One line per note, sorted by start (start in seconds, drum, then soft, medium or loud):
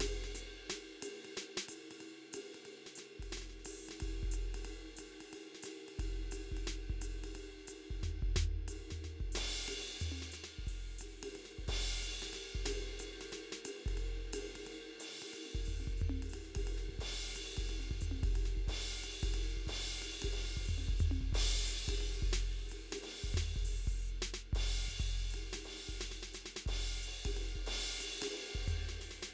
0.01 snare medium
0.01 ride loud
0.24 snare soft
0.24 ride medium
0.35 snare soft
0.35 hi-hat pedal loud
0.35 ride medium
0.70 snare medium
0.70 ride medium
1.03 hi-hat pedal loud
1.03 ride loud
1.25 ride medium
1.37 snare medium
1.37 ride medium
1.58 snare medium
1.69 hi-hat pedal loud
1.69 ride medium
1.91 ride medium
2.01 ride medium
2.21 snare soft
2.34 hi-hat pedal loud
2.34 ride loud
2.55 ride medium
2.66 ride medium
2.87 snare soft
2.96 snare soft
2.96 hi-hat pedal loud
2.96 ride medium
3.20 kick soft
3.20 ride medium
3.33 snare medium
3.33 ride medium
3.38 snare soft
3.42 snare soft
3.50 snare soft
3.60 snare soft
3.65 hi-hat pedal loud
3.65 ride medium
3.89 snare soft
3.89 ride medium
4.01 kick soft
4.01 ride medium
4.24 kick soft
4.32 hi-hat pedal loud
4.32 ride medium
4.55 ride medium
4.65 ride medium
4.97 hi-hat pedal medium
4.97 ride medium
5.21 ride medium
5.34 ride medium
5.55 snare soft
5.63 snare soft
5.63 hi-hat pedal loud
5.63 ride medium
5.89 ride medium
6.00 kick soft
6.00 ride medium
6.32 hi-hat pedal medium
6.32 ride medium
6.52 kick soft
6.57 ride medium
6.68 snare medium
6.68 ride medium
6.90 kick soft
7.02 hi-hat pedal loud
7.02 ride medium
7.24 ride medium
7.36 ride medium
7.68 hi-hat pedal loud
7.68 ride medium
7.91 kick soft
8.04 snare soft
8.04 floor tom medium
8.23 kick soft
8.37 snare medium
8.37 floor tom medium
8.69 hi-hat pedal medium
8.69 ride medium
8.91 snare soft
8.91 floor tom medium
9.05 snare soft
9.05 floor tom soft
9.21 kick soft
9.33 snare medium
9.33 hi-hat pedal medium
9.37 ride medium
9.69 ride medium
10.01 floor tom medium
10.01 hi-hat pedal medium
10.12 high tom medium
10.23 snare soft
10.32 snare soft
10.32 hi-hat pedal medium
10.44 snare soft
10.59 kick soft
10.68 kick soft
10.68 crash medium
10.99 hi-hat pedal loud
10.99 ride medium
11.23 ride loud
11.36 ride medium
11.46 snare soft
11.59 kick soft
11.69 kick soft
11.69 ride medium
12.03 hi-hat pedal medium
12.03 ride medium
12.23 snare soft
12.23 ride medium
12.34 snare soft
12.34 ride medium
12.55 kick soft
12.66 snare medium
12.66 ride loud
12.89 snare soft
13.00 hi-hat pedal loud
13.00 ride medium
13.21 snare soft
13.21 ride medium
13.33 snare medium
13.33 ride medium
13.53 snare medium
13.65 hi-hat pedal loud
13.65 ride loud
13.87 kick soft
13.87 ride medium
13.98 ride medium
14.21 snare soft
14.33 hi-hat pedal loud
14.33 ride loud
14.56 ride medium
14.67 ride medium
14.90 snare soft
15.00 hi-hat pedal loud
15.00 ride medium
15.22 ride medium
15.34 ride medium
15.46 high tom soft
15.55 kick soft
15.66 floor tom medium
15.66 hi-hat pedal medium
15.81 high tom soft
15.88 kick soft
15.98 floor tom medium
15.98 hi-hat pedal soft
16.10 high tom medium
16.23 ride medium
16.30 hi-hat pedal medium
16.34 ride medium
16.45 snare soft
16.56 kick soft
16.56 ride medium
16.65 hi-hat pedal soft
16.65 ride medium
16.78 snare soft
16.90 kick soft
17.00 kick soft
17.00 ride medium
17.14 snare soft
17.23 snare soft
17.35 hi-hat pedal medium
17.35 ride medium
17.46 snare soft
17.57 kick soft
17.57 ride medium
17.70 ride medium
17.80 high tom soft
17.92 kick soft
18.01 floor tom medium
18.01 hi-hat pedal medium
18.12 high tom medium
18.24 kick medium
18.24 ride medium
18.36 ride medium
18.46 snare soft
18.58 kick soft
18.68 kick soft
18.68 ride medium
18.81 snare soft
18.92 snare soft
19.04 ride medium
19.12 snare soft
19.24 kick medium
19.24 ride medium
19.35 ride medium
19.45 snare soft
19.57 kick soft
19.68 kick soft
19.68 ride medium
19.81 snare soft
19.92 snare soft
20.02 ride medium
20.12 snare soft
20.22 kick soft
20.22 ride loud
20.33 ride medium
20.45 snare soft
20.58 kick soft
20.66 floor tom medium
20.66 hi-hat pedal medium
20.79 high tom soft
20.89 kick soft
21.00 floor tom loud
21.00 hi-hat pedal medium
21.12 high tom medium
21.22 kick soft
21.33 kick soft
21.33 ride loud
21.45 snare soft
21.59 snare soft
21.66 hi-hat pedal medium
21.66 ride medium
21.78 snare soft
21.89 kick soft
21.89 ride loud
22.01 ride medium
22.12 snare soft
22.23 kick soft
22.33 snare medium
22.33 crash medium
22.60 snare soft
22.70 hi-hat pedal medium
22.70 ride medium
22.93 snare medium
22.93 ride loud
23.03 snare soft
23.03 ride medium
23.24 kick soft
23.35 snare medium
23.35 floor tom medium
23.57 kick soft
23.57 open hi-hat soft
23.65 hi-hat pedal medium
23.88 open hi-hat medium
23.88 kick soft
24.23 snare medium
24.34 snare medium
24.54 kick medium
24.54 ride medium
24.89 kick soft
25.00 kick medium
25.00 crash medium
25.31 hi-hat pedal medium
25.31 ride medium
25.53 snare medium
25.53 ride medium
25.65 ride medium
25.89 kick soft
25.99 snare medium
25.99 hi-hat pedal soft
26.12 snare soft
26.23 snare medium
26.34 snare medium
26.34 hi-hat pedal medium
26.46 snare medium
26.57 snare medium
26.67 kick soft
26.67 ride medium
27.04 hi-hat pedal medium
27.04 ride soft
27.17 snare soft
27.26 kick soft
27.26 ride loud
27.37 ride medium
27.45 snare soft
27.56 kick soft
27.67 ride medium
27.84 snare soft
28.01 hi-hat pedal medium
28.01 ride medium
28.22 snare medium
28.22 ride loud
28.33 ride soft
28.56 kick soft
28.68 floor tom medium
28.68 hi-hat pedal medium
28.78 high tom soft
28.89 snare soft
29.02 snare soft
29.02 hi-hat pedal medium
29.11 snare soft
29.23 snare medium